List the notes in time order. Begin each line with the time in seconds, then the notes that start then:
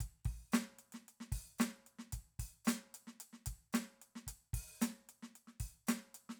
0.00 kick, closed hi-hat
0.25 kick, open hi-hat
0.52 snare, closed hi-hat, hi-hat pedal
0.79 closed hi-hat
0.92 snare, closed hi-hat
1.08 closed hi-hat
1.20 snare
1.32 kick, open hi-hat
1.58 snare, closed hi-hat, hi-hat pedal
1.86 closed hi-hat
1.99 snare
2.12 kick, closed hi-hat
2.39 kick, open hi-hat
2.65 closed hi-hat, snare, hi-hat pedal
2.94 closed hi-hat
3.07 snare
3.20 closed hi-hat
3.33 snare
3.46 kick, closed hi-hat
3.73 snare, closed hi-hat, hi-hat pedal
4.02 closed hi-hat
4.15 snare
4.27 kick, closed hi-hat
4.53 kick, open hi-hat
4.81 snare, closed hi-hat, hi-hat pedal
5.09 closed hi-hat
5.23 snare
5.35 closed hi-hat
5.47 snare
5.60 kick, open hi-hat
5.87 snare, closed hi-hat, hi-hat pedal
6.14 closed hi-hat
6.29 snare